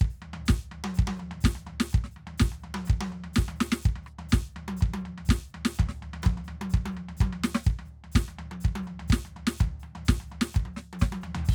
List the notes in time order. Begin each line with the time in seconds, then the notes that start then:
0.01 kick
0.10 open hi-hat
0.22 floor tom
0.33 floor tom
0.46 snare, hi-hat pedal
0.50 kick
0.71 floor tom
0.84 high tom
0.94 floor tom, hi-hat pedal
0.99 kick
1.07 high tom
1.16 floor tom, hi-hat pedal
1.31 floor tom
1.41 kick, hi-hat pedal
1.45 snare
1.55 floor tom
1.62 hi-hat pedal
1.67 floor tom
1.80 snare
1.90 floor tom, hi-hat pedal
1.94 kick
2.04 snare
2.11 hi-hat pedal
2.16 floor tom
2.27 floor tom
2.38 kick, snare, hi-hat pedal
2.52 floor tom
2.59 hi-hat pedal
2.64 floor tom
2.74 high tom
2.85 floor tom, hi-hat pedal
2.90 kick
3.01 high tom
3.07 hi-hat pedal
3.12 floor tom
3.24 floor tom
3.33 snare, hi-hat pedal
3.38 kick
3.48 floor tom
3.56 hi-hat pedal
3.60 snare
3.72 snare
3.81 kick, hi-hat pedal
3.96 floor tom
4.03 cross-stick, hi-hat pedal
4.19 floor tom
4.29 snare, hi-hat pedal
4.33 kick
4.50 hi-hat pedal
4.56 floor tom
4.68 high tom
4.77 hi-hat pedal
4.81 kick, floor tom
4.94 high tom
4.98 hi-hat pedal
5.05 floor tom
5.18 floor tom
5.25 kick, hi-hat pedal
5.30 snare
5.47 hi-hat pedal
5.54 floor tom
5.65 snare
5.74 hi-hat pedal
5.79 kick, floor tom
5.89 snare
5.96 hi-hat pedal
6.02 floor tom
6.13 floor tom
6.22 kick, hi-hat pedal, high tom
6.37 floor tom
6.44 floor tom, hi-hat pedal
6.61 high tom
6.70 hi-hat pedal
6.74 kick, floor tom
6.86 high tom
6.92 hi-hat pedal
6.97 floor tom
7.09 floor tom
7.17 kick, hi-hat pedal
7.21 high tom
7.33 floor tom
7.44 snare
7.55 snare
7.63 kick, hi-hat pedal
7.79 floor tom
7.85 hi-hat pedal
8.04 floor tom
8.12 kick, snare, hi-hat pedal
8.28 floor tom
8.39 floor tom
8.51 high tom
8.60 hi-hat pedal
8.64 kick, floor tom
8.75 high tom
8.83 hi-hat pedal
8.87 floor tom
8.99 floor tom
9.08 kick, hi-hat pedal
9.12 snare
9.25 floor tom
9.36 floor tom
9.47 snare
9.58 kick, floor tom, hi-hat pedal
9.79 floor tom, hi-hat pedal
9.95 floor tom
10.05 kick, snare, hi-hat pedal
10.20 floor tom
10.27 hi-hat pedal
10.32 floor tom
10.41 snare
10.53 kick, floor tom, hi-hat pedal
10.65 high tom
10.74 snare, hi-hat pedal
10.93 high tom
10.99 kick, snare, hi-hat pedal
11.12 high tom
11.21 floor tom, hi-hat pedal
11.35 floor tom
11.45 kick, hi-hat pedal
11.49 crash